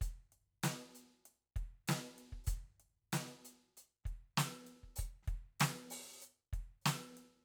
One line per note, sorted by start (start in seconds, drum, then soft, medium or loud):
0.01 closed hi-hat medium
0.01 kick soft
0.32 closed hi-hat soft
0.63 closed hi-hat medium
0.63 snare loud
0.95 closed hi-hat soft
1.26 closed hi-hat soft
1.56 kick soft
1.56 closed hi-hat soft
1.88 closed hi-hat medium
1.88 snare loud
2.18 closed hi-hat soft
2.32 kick soft
2.44 closed hi-hat medium
2.44 kick soft
2.44 hi-hat pedal soft
2.53 kick soft
2.57 kick soft
2.80 closed hi-hat soft
3.12 closed hi-hat medium
3.12 snare medium
3.26 snare soft
3.45 closed hi-hat soft
3.77 closed hi-hat soft
4.04 kick soft
4.04 snare soft
4.04 closed hi-hat soft
4.37 open hi-hat medium
4.37 snare loud
4.37 hi-hat pedal soft
4.67 open hi-hat soft
4.83 kick soft
4.96 open hi-hat medium
4.96 kick soft
4.96 hi-hat pedal soft
5.23 snare soft
5.28 kick soft
5.28 closed hi-hat soft
5.60 closed hi-hat medium
5.60 snare loud
5.90 open hi-hat medium
6.21 hi-hat pedal medium
6.53 kick soft
6.53 closed hi-hat soft
6.82 hi-hat pedal soft
6.86 closed hi-hat medium
6.86 snare loud
7.17 closed hi-hat soft